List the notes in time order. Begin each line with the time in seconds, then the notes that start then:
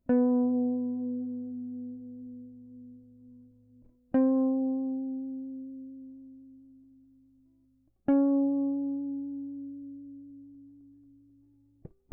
0.09 B3
4.14 C4
8.09 C#4